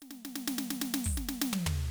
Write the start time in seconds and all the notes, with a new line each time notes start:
0.00 snare, hi-hat pedal
0.11 snare
0.25 snare
0.35 snare
0.48 snare, hi-hat pedal
0.58 snare
0.70 snare, hi-hat pedal
0.81 snare
0.94 snare
1.04 open hi-hat, kick
1.13 hi-hat pedal
1.17 snare
1.29 snare
1.42 snare
1.53 high tom
1.66 floor tom